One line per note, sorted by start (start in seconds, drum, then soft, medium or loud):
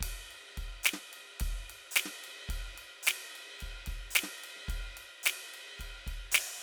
0.01 kick soft
0.01 ride loud
0.07 kick soft
0.31 ride soft
0.51 snare soft
0.58 kick soft
0.58 ride soft
0.84 snare loud
0.84 hi-hat pedal medium
0.84 ride loud
0.94 snare soft
1.14 ride medium
1.18 snare soft
1.24 snare soft
1.40 kick medium
1.40 ride medium
1.49 kick soft
1.70 ride medium
1.92 hi-hat pedal medium
1.96 snare loud
1.96 ride loud
2.06 snare soft
2.24 snare soft
2.24 ride medium
2.32 snare soft
2.49 kick soft
2.49 ride medium
2.56 kick soft
2.75 snare soft
2.75 ride medium
3.03 hi-hat pedal medium
3.03 ride loud
3.08 snare loud
3.36 ride soft
3.59 kick soft
3.59 hi-hat pedal soft
3.59 ride soft
3.87 kick soft
3.87 ride medium
3.94 kick soft
4.11 hi-hat pedal medium
4.16 snare loud
4.16 ride loud
4.24 snare soft
4.38 hi-hat pedal soft
4.44 ride medium
4.57 snare soft
4.61 snare soft
4.69 kick soft
4.69 hi-hat pedal soft
4.69 ride medium
4.76 kick soft
4.98 ride medium
5.24 snare loud
5.24 hi-hat pedal medium
5.24 ride loud
5.54 ride soft
5.79 kick soft
5.79 hi-hat pedal soft
5.79 ride soft
6.07 kick soft
6.07 ride soft
6.32 snare loud
6.32 hi-hat pedal loud
6.32 ride loud
6.59 snare soft